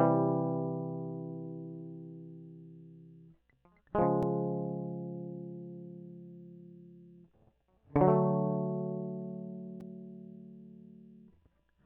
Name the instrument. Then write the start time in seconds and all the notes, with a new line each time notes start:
electric guitar
0.00 G3
3.96 G#3
4.00 C#3 F3
7.97 D3
8.02 F#3
8.08 A3